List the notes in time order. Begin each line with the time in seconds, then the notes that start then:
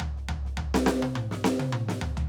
0.00 floor tom
0.16 snare
0.29 floor tom
0.45 snare
0.57 floor tom
0.74 snare
0.86 snare
1.02 high tom
1.15 mid tom
1.31 snare
1.44 snare
1.59 high tom
1.73 mid tom
1.88 snare
2.01 floor tom
2.17 floor tom